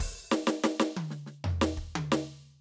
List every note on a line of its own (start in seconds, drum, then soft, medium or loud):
0.00 open hi-hat loud
0.00 kick medium
0.31 snare loud
0.47 snare loud
0.64 snare loud
0.80 snare loud
0.96 high tom loud
1.10 snare soft
1.26 snare soft
1.44 floor tom loud
1.61 snare loud
1.77 kick medium
1.95 high tom loud
2.12 snare loud